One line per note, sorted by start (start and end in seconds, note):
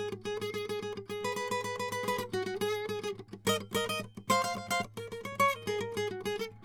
0.00 0.09 G#4
0.10 0.16 G4
0.27 0.40 G#4
0.43 0.53 G#4
0.56 0.68 G#4
0.71 0.82 G#4
0.84 0.94 G#4
0.94 1.02 G4
1.11 2.05 G#4
1.26 1.35 B4
1.38 1.51 B4
1.53 1.66 B4
1.66 1.79 B4
1.81 1.92 B4
1.94 2.07 B4
2.05 2.24 G#4
2.10 2.20 B4
2.20 2.29 B4
2.35 2.44 F#4
2.44 2.55 F#4
2.56 2.63 G#4
2.64 2.72 G#4
2.91 3.02 G#4
3.05 3.15 G#4
3.48 3.59 A#4
3.48 3.61 D#5
3.76 3.87 A#4
3.76 3.87 D#5
3.88 4.03 A#4
3.88 4.06 D#5
4.31 4.43 C5
4.31 4.46 F5
4.44 4.56 C5
4.44 4.56 F5
4.57 4.68 C5
4.57 4.72 F5
4.72 4.84 C5
4.72 4.88 F5
4.99 5.11 A#4
5.13 5.24 A#4
5.26 5.38 C#5
5.41 5.51 C#5
5.51 5.68 A#4
5.69 5.86 G#4
5.69 5.80 A#4
5.82 6.01 A#4
5.98 6.08 G#4
6.09 6.24 F#4
6.27 6.38 G#4
6.41 6.56 A4